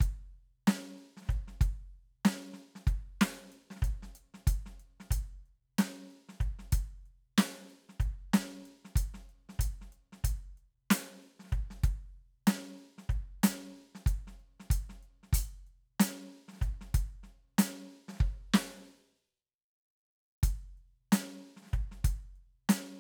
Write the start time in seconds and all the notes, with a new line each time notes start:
0.01 kick, closed hi-hat
0.68 snare, closed hi-hat
0.98 snare, closed hi-hat
1.17 snare
1.22 snare
1.26 snare
1.28 kick, snare, closed hi-hat
1.48 snare
1.61 kick, closed hi-hat
2.26 snare, closed hi-hat
2.54 snare, closed hi-hat
2.76 snare
2.87 kick, closed hi-hat
3.22 snare, closed hi-hat
3.52 snare, closed hi-hat
3.71 snare
3.77 snare
3.81 kick, snare, closed hi-hat
4.03 snare
4.16 closed hi-hat
4.34 snare
4.47 kick, closed hi-hat
4.66 snare
4.77 snare, closed hi-hat
5.01 snare
5.11 kick, closed hi-hat
5.46 closed hi-hat
5.79 snare, closed hi-hat
6.11 closed hi-hat
6.29 snare
6.33 snare
6.41 kick, closed hi-hat
6.59 snare
6.73 kick, closed hi-hat
7.06 closed hi-hat
7.38 snare, closed hi-hat
7.70 closed hi-hat
7.89 snare
8.00 kick, closed hi-hat
8.34 snare, closed hi-hat
8.66 closed hi-hat
8.85 snare
8.96 kick, closed hi-hat
9.14 snare
9.30 closed hi-hat
9.49 snare
9.60 kick, closed hi-hat
9.82 snare
9.93 closed hi-hat
10.13 snare
10.24 kick, closed hi-hat
10.58 closed hi-hat
10.91 closed hi-hat, snare
11.19 snare
11.24 closed hi-hat
11.40 snare
11.44 snare
11.47 snare
11.53 kick, closed hi-hat
11.71 snare
11.84 kick, closed hi-hat
12.48 snare, closed hi-hat
12.79 closed hi-hat
12.99 snare
13.10 kick, closed hi-hat
13.44 closed hi-hat, snare
13.75 closed hi-hat
13.95 snare
14.07 kick, closed hi-hat
14.28 snare
14.40 closed hi-hat
14.60 snare
14.71 kick, closed hi-hat
14.90 snare
15.03 closed hi-hat
15.24 snare
15.33 closed hi-hat, kick
15.67 closed hi-hat
16.00 closed hi-hat, snare
16.49 snare
16.53 snare
16.57 snare
16.59 kick, snare
16.63 snare, closed hi-hat
16.82 snare
16.95 kick, closed hi-hat
17.24 snare
17.59 closed hi-hat, snare
17.91 closed hi-hat
18.09 snare
18.13 snare
18.16 snare
18.21 kick
18.54 snare
20.43 kick, closed hi-hat
20.78 closed hi-hat
21.13 closed hi-hat, snare
21.57 snare
21.63 snare
21.65 snare
21.67 snare
21.74 kick, closed hi-hat
21.92 snare
22.05 kick, closed hi-hat
22.36 closed hi-hat
22.70 closed hi-hat, snare